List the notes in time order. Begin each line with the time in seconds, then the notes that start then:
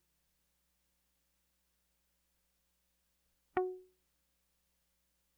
3.58 F#4